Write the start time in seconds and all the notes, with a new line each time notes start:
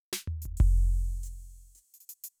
0.13 snare
0.28 floor tom
0.42 closed hi-hat, kick
0.57 kick, crash
1.23 hi-hat pedal
1.75 hi-hat pedal
1.94 closed hi-hat
2.00 closed hi-hat
2.09 closed hi-hat
2.24 closed hi-hat